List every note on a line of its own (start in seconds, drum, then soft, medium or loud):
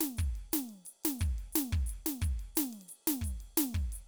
0.01 snare medium
0.17 kick medium
0.17 hi-hat pedal medium
0.17 ride soft
0.36 ride soft
0.53 snare medium
0.53 hi-hat pedal medium
0.53 ride soft
0.69 ride soft
0.85 hi-hat pedal medium
0.85 ride soft
1.04 snare medium
1.04 ride soft
1.19 kick medium
1.19 hi-hat pedal medium
1.19 ride soft
1.39 ride soft
1.53 snare medium
1.53 hi-hat pedal medium
1.53 ride soft
1.73 kick medium
1.73 ride soft
1.86 hi-hat pedal medium
1.86 ride soft
2.06 snare medium
2.06 ride soft
2.22 kick medium
2.22 hi-hat pedal medium
2.22 ride soft
2.40 ride soft
2.56 snare medium
2.56 hi-hat pedal medium
2.56 ride soft
2.73 ride soft
2.81 ride soft
2.89 hi-hat pedal medium
2.89 ride soft
3.08 snare medium
3.08 ride soft
3.22 kick soft
3.22 hi-hat pedal medium
3.22 ride soft
3.41 ride soft
3.57 snare medium
3.57 hi-hat pedal medium
3.57 ride soft
3.75 kick medium
3.75 ride soft
3.92 hi-hat pedal medium
3.92 ride soft